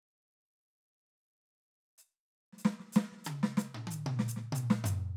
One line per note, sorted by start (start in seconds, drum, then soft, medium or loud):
1.99 hi-hat pedal soft
2.53 snare soft
2.58 snare soft
2.58 hi-hat pedal medium
2.61 snare soft
2.65 snare loud
2.80 snare soft
2.85 snare soft
2.88 snare soft
2.92 snare soft
2.92 hi-hat pedal medium
2.97 snare loud
3.12 snare soft
3.18 snare soft
3.22 snare soft
3.22 hi-hat pedal loud
3.27 high tom medium
3.44 snare medium
3.58 snare medium
3.58 hi-hat pedal medium
3.75 mid tom medium
3.88 hi-hat pedal loud
3.88 open hi-hat soft
3.88 high tom loud
4.07 mid tom loud
4.20 snare medium
4.29 hi-hat pedal loud
4.37 snare soft
4.53 hi-hat pedal loud
4.53 mid tom loud
4.71 snare loud
4.85 floor tom loud
4.85 hi-hat pedal loud